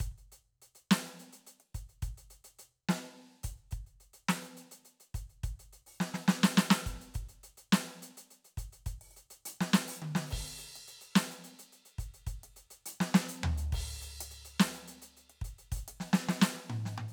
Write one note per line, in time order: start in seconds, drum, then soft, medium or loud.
0.02 closed hi-hat medium
0.02 kick soft
0.07 kick soft
0.11 kick soft
0.18 closed hi-hat soft
0.32 closed hi-hat medium
0.62 closed hi-hat medium
0.75 closed hi-hat soft
0.91 snare loud
1.06 closed hi-hat soft
1.19 closed hi-hat medium
1.33 closed hi-hat medium
1.47 closed hi-hat medium
1.60 closed hi-hat soft
1.74 closed hi-hat medium
1.74 kick soft
1.89 closed hi-hat soft
2.02 closed hi-hat medium
2.02 kick soft
2.08 kick soft
2.17 closed hi-hat medium
2.30 closed hi-hat medium
2.44 closed hi-hat medium
2.59 closed hi-hat medium
2.89 snare loud
3.29 open hi-hat soft
3.43 closed hi-hat loud
3.43 kick soft
3.49 kick soft
3.57 closed hi-hat soft
3.71 closed hi-hat medium
3.71 kick soft
3.86 closed hi-hat soft
4.00 closed hi-hat soft
4.13 closed hi-hat medium
4.28 snare loud
4.44 closed hi-hat soft
4.57 closed hi-hat medium
4.71 closed hi-hat medium
4.85 closed hi-hat soft
5.00 closed hi-hat soft
5.14 closed hi-hat medium
5.14 kick soft
5.29 closed hi-hat soft
5.43 closed hi-hat medium
5.43 kick soft
5.52 kick soft
5.59 closed hi-hat medium
5.73 closed hi-hat soft
5.86 open hi-hat medium
6.00 snare medium
6.14 snare medium
6.28 snare loud
6.43 snare loud
6.57 snare loud
6.70 snare loud
6.78 hi-hat pedal soft
6.86 closed hi-hat medium
6.86 kick soft
7.01 closed hi-hat soft
7.14 closed hi-hat medium
7.14 kick soft
7.29 closed hi-hat soft
7.43 closed hi-hat medium
7.57 closed hi-hat medium
7.72 snare loud
8.02 closed hi-hat medium
8.17 closed hi-hat medium
8.30 closed hi-hat medium
8.45 closed hi-hat soft
8.57 closed hi-hat medium
8.57 kick soft
8.72 closed hi-hat soft
8.72 closed hi-hat medium
8.86 closed hi-hat medium
8.86 kick soft
8.91 kick soft
9.01 open hi-hat soft
9.11 open hi-hat soft
9.16 closed hi-hat medium
9.30 closed hi-hat medium
9.45 closed hi-hat loud
9.61 snare medium
9.73 snare loud
9.88 open hi-hat loud
10.02 high tom medium
10.15 snare medium
10.26 hi-hat pedal soft
10.31 kick soft
10.31 crash loud
10.46 closed hi-hat medium
10.58 closed hi-hat medium
10.76 closed hi-hat medium
10.88 closed hi-hat medium
11.01 closed hi-hat medium
11.15 snare loud
11.31 closed hi-hat medium
11.44 closed hi-hat medium
11.59 closed hi-hat medium
11.72 closed hi-hat soft
11.85 closed hi-hat medium
11.98 closed hi-hat medium
11.98 kick soft
12.14 closed hi-hat medium
12.27 closed hi-hat medium
12.27 kick soft
12.43 closed hi-hat medium
12.56 closed hi-hat medium
12.70 closed hi-hat medium
12.86 closed hi-hat loud
13.00 snare medium
13.14 snare loud
13.29 closed hi-hat loud
13.43 floor tom loud
13.58 closed hi-hat medium
13.72 kick soft
13.72 crash medium
13.78 kick soft
13.87 closed hi-hat soft
14.02 closed hi-hat medium
14.21 closed hi-hat loud
14.31 closed hi-hat medium
14.45 closed hi-hat medium
14.60 snare loud
14.74 closed hi-hat medium
14.87 closed hi-hat medium
15.02 closed hi-hat medium
15.17 closed hi-hat soft
15.30 closed hi-hat soft
15.41 closed hi-hat medium
15.41 kick soft
15.58 closed hi-hat soft
15.58 closed hi-hat medium
15.72 closed hi-hat medium
15.72 kick soft
15.76 closed hi-hat medium
15.88 closed hi-hat medium
16.00 snare medium
16.13 snare loud
16.29 snare medium
16.42 snare loud
16.55 cross-stick medium
16.70 mid tom loud
16.85 snare soft
16.98 mid tom medium
17.08 hi-hat pedal soft